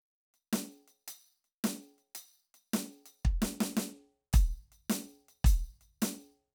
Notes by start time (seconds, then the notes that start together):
0.34 closed hi-hat
0.53 snare, closed hi-hat
0.88 closed hi-hat
1.08 closed hi-hat
1.44 closed hi-hat
1.64 snare, closed hi-hat
1.98 closed hi-hat
2.15 closed hi-hat
2.54 closed hi-hat
2.73 snare, closed hi-hat
3.06 closed hi-hat
3.25 kick
3.42 snare
3.60 snare
3.77 snare
4.33 closed hi-hat, kick
4.72 closed hi-hat
4.90 closed hi-hat, snare
5.28 closed hi-hat
5.44 closed hi-hat, kick
5.81 closed hi-hat
6.02 closed hi-hat, snare